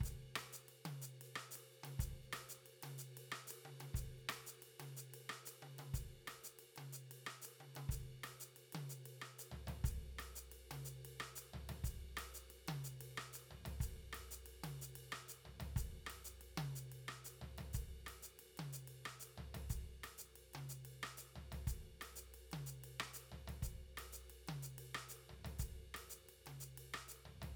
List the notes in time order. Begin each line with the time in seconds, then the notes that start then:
0.01 kick, ride
0.05 hi-hat pedal
0.36 cross-stick, ride
0.53 hi-hat pedal
0.69 ride
0.74 hi-hat pedal
0.86 high tom, ride
1.02 hi-hat pedal
1.21 hi-hat pedal, ride
1.36 cross-stick
1.51 hi-hat pedal
1.56 ride
1.72 hi-hat pedal
1.84 high tom, ride
2.00 kick, hi-hat pedal, ride
2.22 hi-hat pedal
2.33 cross-stick, ride
2.49 hi-hat pedal
2.66 ride
2.83 high tom, ride
2.98 hi-hat pedal
3.17 ride
3.32 cross-stick
3.47 hi-hat pedal, ride
3.65 high tom
3.81 high tom, ride
3.95 kick, hi-hat pedal, ride
4.18 hi-hat pedal
4.29 cross-stick, ride
4.47 hi-hat pedal
4.62 ride
4.80 high tom, ride
4.97 hi-hat pedal
5.14 ride
5.30 cross-stick
5.46 hi-hat pedal, ride
5.63 high tom
5.79 high tom, ride
5.94 kick, hi-hat pedal, ride
6.28 cross-stick, ride
6.44 hi-hat pedal
6.59 ride
6.76 high tom, ride
6.93 hi-hat pedal
7.11 hi-hat pedal, ride
7.27 cross-stick
7.42 hi-hat pedal, ride
7.61 high tom
7.76 high tom, ride
7.89 kick, hi-hat pedal, ride
8.24 cross-stick, ride
8.40 hi-hat pedal
8.57 ride
8.73 high tom, ride
8.90 hi-hat pedal
9.06 ride
9.22 cross-stick
9.39 hi-hat pedal, ride
9.52 floor tom
9.68 floor tom, ride
9.84 kick, hi-hat pedal, ride
10.19 cross-stick, ride
10.36 hi-hat pedal
10.52 ride
10.71 high tom, ride
10.85 hi-hat pedal
11.05 ride
11.20 cross-stick
11.36 hi-hat pedal, ride
11.54 floor tom
11.69 floor tom, ride
11.84 kick, hi-hat pedal, ride
12.17 cross-stick, ride
12.34 hi-hat pedal
12.51 ride
12.68 high tom, ride
12.84 hi-hat pedal
13.01 ride
13.18 cross-stick
13.33 hi-hat pedal, ride
13.51 floor tom
13.66 floor tom, ride
13.81 kick, hi-hat pedal, ride
14.13 cross-stick, ride
14.31 hi-hat pedal
14.46 ride
14.64 high tom, ride
14.82 hi-hat pedal
14.96 ride
15.12 cross-stick
15.29 hi-hat pedal, ride
15.46 floor tom
15.60 floor tom, ride
15.76 kick, hi-hat pedal, ride
16.07 cross-stick, ride
16.25 hi-hat pedal
16.41 ride
16.58 high tom, ride
16.76 hi-hat pedal
16.92 ride
17.09 cross-stick
17.25 hi-hat pedal, ride
17.42 floor tom
17.58 floor tom, ride
17.74 kick, hi-hat pedal, ride
18.07 cross-stick, ride
18.23 hi-hat pedal
18.39 ride
18.58 high tom, ride
18.73 hi-hat pedal
18.88 ride
19.06 cross-stick
19.20 hi-hat pedal, ride
19.38 floor tom
19.55 floor tom, ride
19.70 kick, hi-hat pedal, ride
20.04 cross-stick, ride
20.18 hi-hat pedal
20.36 ride
20.54 high tom, ride
20.69 hi-hat pedal
20.85 ride
20.91 hi-hat pedal
21.03 cross-stick
21.18 hi-hat pedal, ride
21.36 floor tom
21.52 floor tom, ride
21.67 kick, hi-hat pedal, ride
22.01 cross-stick, ride
22.16 hi-hat pedal
22.34 ride
22.52 high tom, ride
22.66 hi-hat pedal
22.84 ride
23.00 cross-stick
23.14 hi-hat pedal, ride
23.32 floor tom
23.48 floor tom, ride
23.63 kick, hi-hat pedal, ride
23.98 cross-stick, ride
24.13 hi-hat pedal
24.30 ride
24.48 high tom, ride
24.63 hi-hat pedal
24.79 ride
24.84 hi-hat pedal
24.95 cross-stick
25.09 hi-hat pedal, ride
25.30 floor tom
25.45 floor tom, ride
25.59 kick, hi-hat pedal, ride
25.95 cross-stick, ride
26.10 hi-hat pedal
26.29 ride
26.46 high tom, ride
26.61 hi-hat pedal
26.78 ride
26.94 cross-stick
27.09 hi-hat pedal, ride
27.26 floor tom
27.42 floor tom, ride